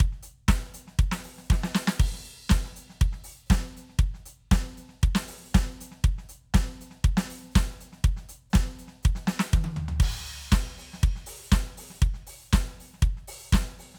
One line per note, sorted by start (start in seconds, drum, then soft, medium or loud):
0.01 kick loud
0.01 closed hi-hat soft
0.13 snare soft
0.16 snare soft
0.24 closed hi-hat loud
0.49 kick loud
0.49 snare loud
0.49 closed hi-hat medium
0.75 closed hi-hat loud
0.88 snare soft
1.00 closed hi-hat soft
1.00 kick loud
1.12 snare loud
1.19 snare soft
1.25 open hi-hat medium
1.39 snare soft
1.47 hi-hat pedal soft
1.51 kick loud
1.51 snare medium
1.64 snare loud
1.76 snare loud
1.88 snare loud
2.01 kick loud
2.01 crash loud
2.14 snare soft
2.21 kick soft
2.26 closed hi-hat medium
2.50 kick loud
2.50 snare loud
2.66 snare soft
2.77 closed hi-hat medium
2.91 snare soft
3.01 kick loud
3.01 closed hi-hat soft
3.13 snare soft
3.25 open hi-hat loud
3.47 kick loud
3.47 hi-hat pedal soft
3.52 closed hi-hat medium
3.52 snare loud
3.59 snare soft
3.78 closed hi-hat medium
3.90 snare soft
4.00 kick loud
4.00 closed hi-hat soft
4.15 snare soft
4.26 closed hi-hat loud
4.52 kick loud
4.52 snare loud
4.52 closed hi-hat soft
4.78 closed hi-hat medium
4.89 snare soft
5.03 kick loud
5.03 closed hi-hat soft
5.16 snare loud
5.29 open hi-hat loud
5.53 kick loud
5.53 snare loud
5.53 hi-hat pedal soft
5.57 closed hi-hat soft
5.63 snare soft
5.81 closed hi-hat loud
5.92 snare soft
6.05 kick loud
6.05 closed hi-hat soft
6.19 snare soft
6.30 closed hi-hat loud
6.55 closed hi-hat soft
6.55 kick loud
6.55 snare loud
6.82 closed hi-hat medium
6.91 snare soft
7.05 kick loud
7.05 closed hi-hat soft
7.18 snare loud
7.26 snare soft
7.31 open hi-hat loud
7.52 kick loud
7.52 snare loud
7.52 hi-hat pedal soft
7.59 closed hi-hat soft
7.81 closed hi-hat medium
7.93 snare soft
8.04 closed hi-hat soft
8.04 kick loud
8.18 snare soft
8.30 closed hi-hat loud
8.51 snare loud
8.51 hi-hat pedal soft
8.55 closed hi-hat medium
8.55 kick loud
8.80 closed hi-hat medium
8.89 snare soft
9.04 closed hi-hat medium
9.04 kick loud
9.16 snare medium
9.28 snare loud
9.40 snare loud
9.53 kick loud
9.53 hi-hat pedal medium
9.53 high tom loud
9.65 high tom loud
9.77 floor tom loud
9.89 floor tom loud
10.01 kick loud
10.01 crash loud
10.19 snare soft
10.26 closed hi-hat medium
10.51 kick loud
10.51 snare loud
10.51 hi-hat pedal soft
10.79 open hi-hat medium
10.94 snare soft
10.99 hi-hat pedal soft
11.04 kick loud
11.04 closed hi-hat soft
11.16 snare soft
11.27 open hi-hat loud
11.49 kick loud
11.49 snare loud
11.49 hi-hat pedal soft
11.54 closed hi-hat medium
11.78 open hi-hat loud
11.91 snare soft
11.99 hi-hat pedal soft
12.03 kick loud
12.03 closed hi-hat soft
12.15 snare soft
12.28 open hi-hat loud
12.51 kick loud
12.51 snare loud
12.51 hi-hat pedal soft
12.55 closed hi-hat medium
12.69 snare soft
12.81 open hi-hat medium
12.94 snare soft
12.99 kick loud
12.99 snare soft
12.99 hi-hat pedal soft
13.05 closed hi-hat soft
13.18 snare soft
13.29 open hi-hat loud
13.49 hi-hat pedal soft
13.53 kick loud
13.53 snare loud
13.53 closed hi-hat medium
13.62 snare soft
13.67 snare soft
13.69 snare soft
13.76 open hi-hat medium
13.76 snare soft
13.95 snare soft